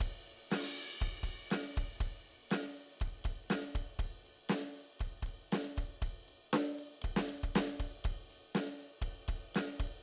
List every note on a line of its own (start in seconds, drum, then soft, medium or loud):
0.01 kick medium
0.01 ride loud
0.28 ride soft
0.51 snare medium
0.51 ride loud
0.78 ride medium
1.01 kick medium
1.01 ride loud
1.24 kick medium
1.24 ride medium
1.51 snare medium
1.51 ride loud
1.77 kick medium
1.77 ride medium
2.01 kick medium
2.01 ride loud
2.51 snare medium
2.51 ride loud
2.78 ride soft
3.01 kick medium
3.01 ride medium
3.25 kick medium
3.25 ride loud
3.51 snare medium
3.51 ride loud
3.76 kick medium
3.76 ride loud
3.99 kick medium
3.99 ride loud
4.27 ride soft
4.50 snare loud
4.50 ride loud
4.76 ride medium
5.00 kick medium
5.00 ride medium
5.23 kick medium
5.23 ride medium
5.53 snare loud
5.53 ride loud
5.78 kick medium
5.78 ride medium
6.02 kick medium
6.02 ride loud
6.29 ride medium
6.54 snare medium
6.54 ride loud
6.79 ride medium
7.02 kick medium
7.02 ride loud
7.17 snare loud
7.30 ride medium
7.44 kick medium
7.56 snare loud
7.56 ride loud
7.80 kick medium
7.80 ride loud
8.05 kick medium
8.05 ride loud
8.31 ride medium
8.55 snare loud
8.55 ride loud
8.80 ride medium
9.02 kick medium
9.02 ride loud
9.29 kick medium
9.29 ride loud
9.55 snare medium
9.55 ride loud
9.80 kick medium
9.80 ride loud